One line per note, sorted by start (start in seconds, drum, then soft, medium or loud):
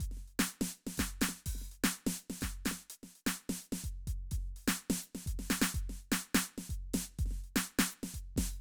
0.00 closed hi-hat medium
0.00 kick soft
0.09 kick soft
0.09 snare soft
0.17 snare soft
0.27 closed hi-hat soft
0.39 snare loud
0.47 hi-hat pedal medium
0.51 closed hi-hat soft
0.61 snare medium
0.73 closed hi-hat soft
0.86 snare medium
0.96 closed hi-hat medium
0.96 kick soft
0.96 snare medium
0.96 hi-hat pedal medium
1.21 closed hi-hat medium
1.21 snare medium
1.28 snare soft
1.46 open hi-hat medium
1.46 kick soft
1.55 snare soft
1.61 snare soft
1.71 closed hi-hat soft
1.84 snare loud
1.96 closed hi-hat soft
2.06 snare medium
2.16 closed hi-hat soft
2.16 hi-hat pedal medium
2.30 snare medium
2.41 closed hi-hat medium
2.41 kick soft
2.41 snare medium
2.65 closed hi-hat medium
2.65 snare medium
2.71 snare soft
2.90 closed hi-hat medium
3.03 snare soft
3.15 closed hi-hat soft
3.26 snare medium
3.39 closed hi-hat soft
3.49 snare medium
3.56 hi-hat pedal soft
3.62 closed hi-hat soft
3.72 snare medium
3.84 closed hi-hat medium
3.84 kick soft
4.07 closed hi-hat medium
4.07 kick soft
4.15 kick soft
4.31 closed hi-hat medium
4.31 kick soft
4.31 snare soft
4.38 snare soft
4.56 open hi-hat soft
4.56 hi-hat pedal soft
4.67 snare loud
4.80 closed hi-hat soft
4.90 snare medium
5.01 closed hi-hat soft
5.01 hi-hat pedal medium
5.15 snare soft
5.26 closed hi-hat medium
5.26 kick soft
5.34 kick soft
5.39 snare soft
5.50 snare medium
5.61 snare loud
5.74 closed hi-hat medium
5.74 kick soft
5.89 snare soft
6.00 closed hi-hat soft
6.12 snare medium
6.24 closed hi-hat soft
6.34 snare loud
6.42 hi-hat pedal soft
6.46 closed hi-hat soft
6.58 snare soft
6.69 closed hi-hat medium
6.69 kick soft
6.94 closed hi-hat medium
6.94 kick soft
6.94 snare medium
7.19 closed hi-hat medium
7.19 kick soft
7.25 kick soft
7.25 snare soft
7.28 kick soft
7.28 snare soft
7.44 closed hi-hat soft
7.56 snare medium
7.67 closed hi-hat soft
7.79 snare loud
7.89 hi-hat pedal medium
8.03 snare medium
8.14 closed hi-hat medium
8.14 kick soft
8.36 open hi-hat medium
8.36 kick soft
8.36 snare medium